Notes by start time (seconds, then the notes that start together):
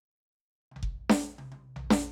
0.71 high tom
0.76 floor tom
0.83 kick
1.10 snare
1.38 high tom
1.52 high tom
1.76 floor tom
1.90 snare